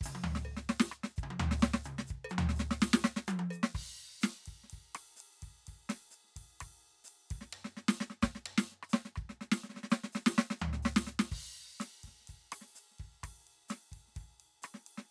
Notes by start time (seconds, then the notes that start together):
0.02 kick, hi-hat pedal
0.06 kick, mid tom
0.16 high tom
0.25 floor tom
0.36 snare
0.46 percussion
0.57 snare
0.63 hi-hat pedal
0.70 snare
0.81 snare
0.89 cross-stick, hi-hat pedal
1.04 snare
1.17 kick, hi-hat pedal
1.24 kick, mid tom
1.28 kick, high tom
1.40 floor tom
1.52 snare
1.60 snare, hi-hat pedal
1.74 snare
1.85 hi-hat pedal, mid tom
1.99 snare
2.08 kick, hi-hat pedal
2.25 percussion
2.30 hi-hat pedal, high tom
2.39 floor tom
2.50 snare
2.56 hi-hat pedal
2.60 snare
2.72 snare
2.81 snare, hi-hat pedal
2.94 snare
3.05 snare, hi-hat pedal
3.17 snare
3.28 hi-hat pedal, high tom
3.40 high tom
3.51 hi-hat pedal, percussion
3.64 snare
3.75 kick, cross-stick, crash
3.82 kick
4.22 snare, hi-hat pedal, ride
4.47 kick, ride
4.54 kick
4.64 snare
4.71 kick, hi-hat pedal, ride
4.79 kick
4.96 cross-stick, ride
5.17 hi-hat pedal
5.21 ride
5.43 kick, ride
5.48 kick
5.67 kick, hi-hat pedal, ride
5.74 kick
5.90 snare, ride
6.12 hi-hat pedal
6.25 snare
6.29 snare
6.37 kick, ride
6.42 kick
6.61 kick, cross-stick, hi-hat pedal, ride
6.67 kick
7.05 hi-hat pedal, ride
7.31 kick, ride
7.38 kick, snare
7.53 floor tom
7.65 snare
7.78 snare
7.89 snare
7.95 hi-hat pedal
8.01 snare
8.11 snare
8.23 kick, snare, hi-hat pedal
8.30 kick
8.36 snare
8.47 floor tom
8.58 snare
8.66 hi-hat pedal
8.72 snare
8.83 cross-stick
8.90 hi-hat pedal
8.94 snare
9.06 snare
9.16 kick, cross-stick, hi-hat pedal
9.30 snare
9.42 snare
9.52 snare
9.64 snare
9.70 snare
9.75 snare
9.77 snare
9.84 snare
9.91 snare, hi-hat pedal
10.04 snare
10.13 snare, hi-hat pedal
10.27 snare
10.37 snare, hi-hat pedal
10.51 snare
10.60 floor tom, hi-hat pedal
10.74 snare
10.83 snare, hi-hat pedal
10.97 snare
11.07 snare, hi-hat pedal
11.20 snare
11.32 kick, hi-hat pedal, crash
11.39 kick
11.81 snare, hi-hat pedal, ride
12.04 kick, snare, ride
12.09 kick
12.14 snare
12.22 snare
12.25 snare, hi-hat pedal, ride
12.30 kick
12.35 kick
12.53 cross-stick, ride
12.62 snare
12.76 hi-hat pedal, ride
12.92 snare
12.99 kick, ride
13.06 kick
13.24 kick, cross-stick, ride
13.30 kick
13.48 ride
13.69 snare, hi-hat pedal, ride
13.93 kick, ride
13.98 kick
14.09 snare
14.13 kick, snare, hi-hat pedal, ride
14.22 kick
14.41 ride
14.63 cross-stick, hi-hat pedal, ride
14.75 snare
14.87 ride
14.98 snare